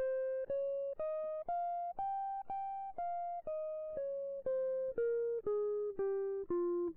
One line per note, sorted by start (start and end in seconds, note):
0.00 0.48 C5
0.51 0.96 C#5
1.00 1.45 D#5
1.49 1.95 F5
1.99 2.45 G5
2.50 2.93 G5
2.99 3.43 F5
3.48 4.02 D#5
3.98 4.44 C#5
4.47 4.95 C5
4.99 5.43 A#4
5.47 5.95 G#4
6.00 6.46 G4
6.51 6.94 F4